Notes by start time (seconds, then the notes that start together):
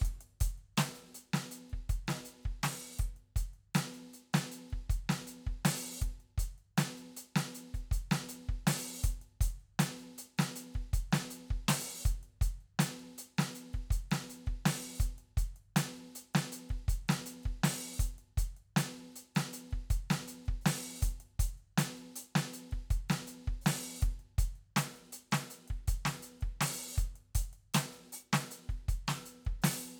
0.01 kick, hi-hat pedal
0.05 closed hi-hat
0.21 closed hi-hat
0.41 closed hi-hat, kick
0.58 closed hi-hat
0.78 closed hi-hat, snare
0.95 closed hi-hat
1.15 closed hi-hat
1.34 snare, closed hi-hat
1.52 closed hi-hat
1.70 kick, closed hi-hat
1.90 closed hi-hat, kick
2.08 snare, closed hi-hat
2.26 closed hi-hat
2.44 kick, closed hi-hat
2.64 open hi-hat, snare
2.99 kick, hi-hat pedal, open hi-hat
3.17 closed hi-hat
3.37 closed hi-hat, kick
3.54 closed hi-hat
3.75 closed hi-hat, snare
3.94 closed hi-hat
4.14 closed hi-hat
4.34 closed hi-hat, snare
4.52 closed hi-hat, cross-stick
4.71 kick, closed hi-hat
4.90 closed hi-hat, kick
5.10 closed hi-hat, snare
5.28 closed hi-hat
5.47 kick, closed hi-hat
5.65 open hi-hat, snare
6.01 kick, closed hi-hat, hi-hat pedal
6.21 closed hi-hat
6.38 closed hi-hat, kick
6.59 closed hi-hat
6.78 closed hi-hat, snare
6.98 closed hi-hat
7.17 closed hi-hat
7.36 closed hi-hat, snare
7.55 closed hi-hat
7.75 closed hi-hat, kick
7.92 closed hi-hat, kick
8.12 snare, closed hi-hat
8.30 closed hi-hat
8.47 kick, closed hi-hat
8.68 open hi-hat, snare
9.03 closed hi-hat, kick, hi-hat pedal
9.22 closed hi-hat
9.41 closed hi-hat, kick
9.60 closed hi-hat
9.80 closed hi-hat, snare
9.99 closed hi-hat
10.19 closed hi-hat
10.39 closed hi-hat, snare
10.56 closed hi-hat
10.75 kick, closed hi-hat
10.94 closed hi-hat, kick
11.13 snare, closed hi-hat
11.18 snare
11.31 closed hi-hat
11.49 kick, closed hi-hat
11.69 open hi-hat, snare
12.04 closed hi-hat, kick, hi-hat pedal
12.24 closed hi-hat
12.42 closed hi-hat, kick
12.61 closed hi-hat
12.80 closed hi-hat, snare
13.00 closed hi-hat
13.19 closed hi-hat
13.39 snare, closed hi-hat
13.56 closed hi-hat
13.74 kick, closed hi-hat
13.91 closed hi-hat, kick
14.12 snare, closed hi-hat
14.30 closed hi-hat
14.47 kick, closed hi-hat
14.66 open hi-hat, snare
14.99 closed hi-hat, kick, hi-hat pedal
15.19 closed hi-hat
15.38 closed hi-hat, kick
15.57 closed hi-hat
15.77 closed hi-hat, snare
15.98 closed hi-hat
16.16 closed hi-hat
16.35 snare, closed hi-hat
16.53 closed hi-hat
16.70 kick, closed hi-hat
16.89 closed hi-hat, kick
17.09 snare, closed hi-hat
17.27 closed hi-hat
17.44 kick, closed hi-hat
17.64 open hi-hat, snare
17.99 closed hi-hat, kick, hi-hat pedal
18.19 closed hi-hat
18.38 closed hi-hat, kick
18.57 closed hi-hat
18.77 closed hi-hat, snare
18.98 closed hi-hat
19.16 closed hi-hat
19.36 closed hi-hat, snare
19.54 closed hi-hat
19.72 kick, closed hi-hat
19.91 closed hi-hat, kick
20.11 closed hi-hat, snare
20.28 closed hi-hat
20.46 kick, closed hi-hat
20.62 hi-hat pedal
20.66 open hi-hat, snare
21.01 closed hi-hat, kick, hi-hat pedal
21.21 closed hi-hat
21.40 closed hi-hat, kick
21.58 closed hi-hat
21.78 closed hi-hat, snare
21.97 closed hi-hat
22.16 closed hi-hat
22.36 snare, closed hi-hat
22.54 closed hi-hat
22.72 kick, closed hi-hat
22.91 closed hi-hat, kick
23.10 closed hi-hat, snare
23.28 closed hi-hat
23.47 kick, closed hi-hat
23.62 hi-hat pedal
23.67 open hi-hat, snare
24.02 kick, closed hi-hat, hi-hat pedal
24.20 closed hi-hat
24.39 closed hi-hat, kick
24.56 closed hi-hat
24.77 closed hi-hat, snare
24.96 closed hi-hat
25.13 closed hi-hat
25.32 closed hi-hat, snare
25.51 closed hi-hat
25.68 kick, closed hi-hat
25.88 closed hi-hat, kick
26.06 snare, closed hi-hat
26.23 closed hi-hat
26.42 kick, closed hi-hat
26.61 open hi-hat, snare
26.96 closed hi-hat, kick, cross-stick, hi-hat pedal
27.16 closed hi-hat
27.35 closed hi-hat, kick
27.54 closed hi-hat
27.75 closed hi-hat, snare
27.93 closed hi-hat
28.13 open hi-hat, hi-hat pedal
28.33 closed hi-hat, snare
28.52 closed hi-hat
28.70 kick, closed hi-hat
28.89 closed hi-hat, kick
29.08 snare, closed hi-hat
29.26 closed hi-hat
29.46 kick, closed hi-hat
29.62 open hi-hat, snare, hi-hat pedal